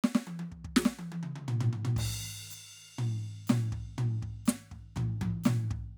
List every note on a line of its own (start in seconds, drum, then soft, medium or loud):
0.04 snare loud
0.15 snare loud
0.26 high tom medium
0.26 percussion soft
0.40 high tom medium
0.52 kick soft
0.65 kick medium
0.77 snare loud
0.86 snare loud
0.99 high tom medium
1.12 high tom loud
1.23 mid tom medium
1.36 mid tom loud
1.48 floor tom loud
1.61 floor tom loud
1.73 floor tom loud
1.85 floor tom loud
1.97 kick medium
1.97 crash loud
2.51 percussion medium
2.99 floor tom loud
3.48 snare loud
3.48 floor tom loud
3.48 percussion medium
3.73 kick medium
3.73 floor tom soft
3.98 floor tom loud
4.22 kick medium
4.22 floor tom soft
4.46 snare loud
4.46 percussion medium
4.46 floor tom loud
4.72 kick soft
4.72 floor tom soft
4.96 kick medium
4.96 floor tom loud
4.96 high tom medium
5.22 kick medium
5.22 floor tom medium
5.22 high tom loud
5.44 snare loud
5.44 floor tom loud
5.44 percussion medium
5.71 kick medium
5.71 floor tom soft